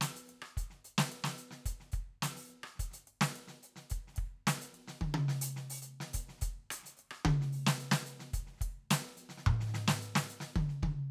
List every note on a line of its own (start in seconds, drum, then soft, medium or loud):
0.01 closed hi-hat loud
0.01 snare loud
0.11 snare soft
0.16 open hi-hat medium
0.25 hi-hat pedal soft
0.29 closed hi-hat soft
0.42 cross-stick medium
0.57 closed hi-hat medium
0.57 kick soft
0.63 kick soft
0.70 snare soft
0.76 snare soft
0.85 closed hi-hat soft
0.98 snare loud
1.12 closed hi-hat soft
1.24 snare medium
1.28 snare medium
1.38 closed hi-hat medium
1.51 snare soft
1.66 closed hi-hat medium
1.66 kick soft
1.71 kick soft
1.80 snare soft
1.88 closed hi-hat medium
1.88 snare soft
1.93 kick soft
2.02 kick soft
2.22 closed hi-hat medium
2.22 snare medium
2.35 open hi-hat medium
2.35 snare soft
2.48 closed hi-hat soft
2.48 hi-hat pedal soft
2.63 cross-stick medium
2.76 closed hi-hat medium
2.76 kick soft
2.76 snare soft
2.85 kick soft
2.91 closed hi-hat medium
2.91 snare soft
2.95 snare soft
3.00 snare soft
3.07 closed hi-hat soft
3.21 snare loud
3.36 closed hi-hat soft
3.48 snare soft
3.63 open hi-hat medium
3.63 hi-hat pedal medium
3.76 snare soft
3.90 closed hi-hat medium
3.90 kick soft
3.97 kick soft
4.08 snare soft
4.14 snare soft
4.14 closed hi-hat medium
4.18 kick soft
4.27 kick soft
4.47 closed hi-hat loud
4.47 snare loud
4.58 closed hi-hat medium
4.58 snare soft
4.74 closed hi-hat soft
4.88 snare medium
5.01 kick soft
5.01 high tom medium
5.14 high tom loud
5.28 snare medium
5.41 closed hi-hat loud
5.56 snare soft
5.70 open hi-hat loud
5.82 closed hi-hat medium
6.00 snare medium
6.14 closed hi-hat medium
6.14 kick soft
6.20 kick soft
6.29 snare soft
6.38 closed hi-hat medium
6.38 snare soft
6.42 kick soft
6.51 kick soft
6.71 closed hi-hat loud
6.71 cross-stick medium
6.83 open hi-hat medium
6.83 snare soft
6.97 closed hi-hat soft
6.97 hi-hat pedal soft
7.11 cross-stick medium
7.25 kick soft
7.25 high tom loud
7.31 kick soft
7.41 snare soft
7.53 open hi-hat soft
7.67 snare loud
7.80 closed hi-hat soft
7.92 snare loud
8.06 closed hi-hat medium
8.20 snare soft
8.34 closed hi-hat medium
8.34 kick soft
8.40 kick soft
8.42 kick soft
8.47 snare soft
8.53 snare soft
8.57 kick soft
8.57 snare soft
8.62 closed hi-hat medium
8.70 kick soft
8.91 closed hi-hat loud
8.91 snare loud
9.02 snare soft
9.17 closed hi-hat soft
9.29 snare soft
9.38 snare soft
9.46 kick soft
9.46 mid tom loud
9.53 kick soft
9.60 snare soft
9.67 snare soft
9.74 snare medium
9.88 snare loud
10.02 closed hi-hat medium
10.15 snare loud
10.30 closed hi-hat soft
10.40 snare medium
10.50 hi-hat pedal soft
10.56 kick soft
10.56 high tom loud
10.62 kick soft
10.66 kick soft
10.66 snare soft
10.83 kick soft
10.83 high tom loud
10.90 kick soft